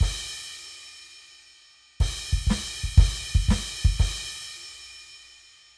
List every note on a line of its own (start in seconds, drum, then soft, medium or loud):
0.01 kick medium
0.01 crash loud
2.01 kick medium
2.01 crash loud
2.33 kick medium
2.47 kick medium
2.47 snare medium
2.47 crash loud
2.52 kick soft
2.84 kick soft
2.98 kick loud
2.98 crash loud
3.35 kick medium
3.49 kick medium
3.49 snare loud
3.49 crash loud
3.54 kick soft
3.85 kick medium
3.99 kick medium
3.99 crash loud